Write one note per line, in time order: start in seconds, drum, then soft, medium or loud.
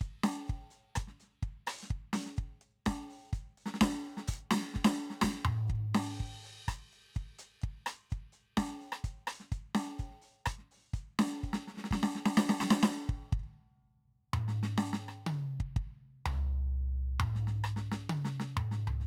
0.01 closed hi-hat soft
0.01 kick soft
0.24 open hi-hat loud
0.24 snare loud
0.37 snare soft
0.47 open hi-hat soft
0.47 kick soft
0.47 snare soft
0.71 open hi-hat soft
0.96 open hi-hat medium
0.96 kick soft
0.96 cross-stick medium
1.08 snare soft
1.20 open hi-hat soft
1.20 snare soft
1.27 snare soft
1.29 snare soft
1.43 kick soft
1.43 closed hi-hat soft
1.67 open hi-hat medium
1.67 cross-stick medium
1.83 snare soft
1.90 kick soft
1.90 closed hi-hat soft
2.13 open hi-hat loud
2.13 snare medium
2.26 snare soft
2.37 closed hi-hat soft
2.37 kick soft
2.42 snare soft
2.49 snare soft
2.61 open hi-hat soft
2.86 open hi-hat medium
2.86 kick soft
2.86 snare medium
3.10 open hi-hat soft
3.33 closed hi-hat medium
3.33 kick soft
3.58 open hi-hat soft
3.66 snare soft
3.74 snare soft
3.81 kick soft
3.81 snare loud
3.92 snare soft
4.05 open hi-hat soft
4.17 snare soft
4.28 open hi-hat loud
4.28 kick soft
4.51 snare loud
4.61 snare soft
4.74 kick soft
4.74 snare soft
4.85 snare loud
5.10 snare soft
5.22 kick soft
5.22 snare loud
5.22 hi-hat pedal soft
5.35 snare soft
5.45 mid tom loud
5.68 kick soft
5.68 hi-hat pedal soft
5.75 kick soft
5.95 snare loud
5.95 crash medium
6.20 kick soft
6.44 open hi-hat soft
6.68 closed hi-hat loud
6.68 kick soft
6.68 cross-stick medium
6.93 open hi-hat soft
7.15 open hi-hat soft
7.15 kick soft
7.39 open hi-hat medium
7.62 kick soft
7.62 closed hi-hat soft
7.86 open hi-hat medium
7.86 cross-stick medium
8.10 open hi-hat soft
8.10 kick soft
8.33 open hi-hat soft
8.57 open hi-hat medium
8.57 kick soft
8.57 snare loud
8.67 snare soft
8.81 open hi-hat soft
8.92 cross-stick medium
9.04 closed hi-hat medium
9.04 kick soft
9.27 open hi-hat medium
9.27 cross-stick medium
9.40 snare soft
9.52 closed hi-hat soft
9.52 kick soft
9.75 open hi-hat medium
9.75 snare loud
9.85 snare soft
9.99 open hi-hat soft
9.99 kick soft
10.10 snare soft
10.14 snare soft
10.22 open hi-hat soft
10.46 open hi-hat medium
10.46 kick soft
10.46 cross-stick medium
10.59 snare soft
10.71 open hi-hat soft
10.77 snare soft
10.94 closed hi-hat soft
10.94 kick soft
11.19 open hi-hat medium
11.19 snare loud
11.27 snare soft
11.44 open hi-hat soft
11.44 kick soft
11.53 snare medium
11.68 snare soft
11.74 snare soft
11.77 snare soft
11.84 snare soft
11.91 kick soft
11.91 snare medium
12.03 snare loud
12.15 snare medium
12.26 snare loud
12.37 snare loud
12.50 snare loud
12.61 snare loud
12.71 snare loud
12.83 snare loud
13.09 kick soft
13.15 kick soft
13.33 kick medium
13.39 kick soft
13.43 kick soft
14.34 mid tom loud
14.48 snare soft
14.63 snare medium
14.78 snare loud
14.93 snare medium
15.09 cross-stick medium
15.27 high tom medium
15.60 kick soft
15.76 kick soft
16.26 floor tom loud
17.20 mid tom loud
17.35 snare soft
17.47 snare soft
17.64 cross-stick medium
17.76 snare soft
17.92 snare medium
18.10 high tom medium
18.25 snare soft
18.40 snare soft
18.57 mid tom loud
18.72 snare soft
18.87 floor tom loud
19.00 snare soft